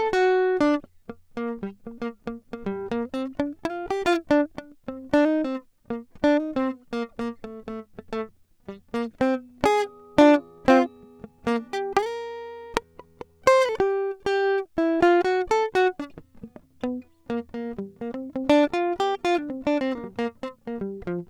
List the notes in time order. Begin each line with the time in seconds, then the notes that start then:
0.00 A4
0.15 F#4
0.62 D4
1.11 A#3
1.38 A#3
1.65 G3
1.88 A#3
2.03 A#3
2.29 A#3
2.55 A#3
2.68 G3
2.93 A#3
3.15 C4
3.41 D4
3.67 F4
3.92 G4
4.04 E4 F4
4.32 D4
4.60 D4
4.90 C4
5.15 D4
5.26 D#4
5.46 C4
5.92 A#3
6.25 D4
6.39 D#4
6.58 C4
6.94 A#3
7.21 A#3
7.46 A3
7.69 A3
8.14 A3
8.70 G3
8.96 A#3
9.22 C4
9.65 D4 G#4
10.20 D4 F4
10.70 C4 F4
11.49 A#3
11.75 G4
11.98 A#4
13.49 C5
13.62 B4
13.82 G4
14.28 G4
14.79 E4
15.04 F4
15.27 F#4
15.53 A4
15.77 F#4
16.85 B3
17.31 A#3
17.55 A#3
17.80 G3
18.03 A#3
18.16 C4
18.37 C4
18.51 D4
18.75 F4
19.02 G4
19.26 F4
19.37 D4
19.52 C4
19.68 D4
19.83 C4
19.93 A#3
20.20 A#3
20.45 C4
20.69 A#3
20.83 G3
21.09 F3